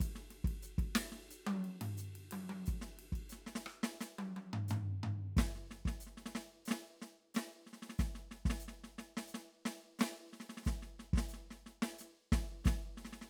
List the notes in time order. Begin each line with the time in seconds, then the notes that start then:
0.01 kick, hi-hat pedal, ride
0.16 snare
0.31 snare, ride
0.45 kick, ride
0.63 hi-hat pedal
0.79 kick, ride
0.96 snare, ride
1.12 snare
1.31 hi-hat pedal, ride
1.47 high tom
1.65 ride
1.82 floor tom, ride
1.98 hi-hat pedal
2.16 ride
2.32 high tom, ride
2.50 high tom
2.66 kick, hi-hat pedal, ride
2.82 snare
2.97 snare, ride
3.13 kick, ride bell
3.30 snare, hi-hat pedal
3.47 snare
3.56 snare
3.67 cross-stick
3.84 snare
4.01 snare, hi-hat pedal
4.19 high tom
4.37 high tom
4.54 floor tom
4.69 floor tom, hi-hat pedal
5.04 floor tom
5.37 kick, snare, hi-hat pedal
5.56 snare
5.71 snare
5.86 kick, snare
6.01 hi-hat pedal
6.07 snare
6.18 snare
6.26 snare
6.36 snare
6.66 snare, hi-hat pedal
6.71 snare
7.02 snare
7.35 snare, hi-hat pedal
7.37 snare
7.67 snare
7.74 snare
7.83 snare
7.90 snare
7.99 kick, snare, hi-hat pedal
8.15 snare
8.32 snare
8.46 kick, snare
8.50 snare
8.60 hi-hat pedal
8.69 snare
8.84 snare
8.99 snare
9.18 snare
9.28 hi-hat pedal
9.35 snare
9.66 snare
9.99 snare, hi-hat pedal
10.02 snare
10.33 snare
10.41 snare
10.50 snare
10.58 snare
10.63 kick, snare, hi-hat pedal
10.83 snare
11.00 snare
11.14 kick, snare
11.18 snare
11.29 hi-hat pedal
11.34 snare
11.51 snare
11.67 snare
11.83 snare
11.99 snare, hi-hat pedal
12.33 kick, snare
12.65 kick, snare, hi-hat pedal
12.67 snare
12.98 snare
13.05 snare
13.13 snare
13.22 snare